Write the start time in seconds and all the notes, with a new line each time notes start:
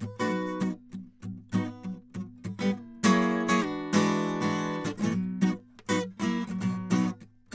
0.02 E3 B4
0.20 E3 A3 D4 F#4 B4
0.31 F#3 B3 D#4
0.61 F#3 B3 D#4 F#4
0.93 F#3 B3
1.23 F#3 B3
1.54 F#3 B3 D#4 F#4 B4
1.68 B3 B4
1.85 F#3 B3
2.16 F#3 B3
2.45 F#3
2.60 G3 B3
2.75 A#3
3.05 F#3 A#3 E4 G#4 C#5
3.49 F#3 A#3 E4 G#4 C#5
3.61 E3 G#3 D4 F#4
3.94 E3 G#3 D4 F#4 B4
4.42 E3 G#3 D4 F#4 B4
4.86 A#2 D4
5.00 E3 A3 D4 F#4
5.05 B2
5.15 B2 F#3 B3
5.42 B2 F#3 B3 D#4 F#4 B4
5.89 B3 D#4 F#4 B4
5.94 F#3
6.20 A#3 E4
6.25 F#3
6.50 F#3 A#3
6.60 B2 F#3 B3
6.91 B2 F#3 B3 D#4 F#4 B4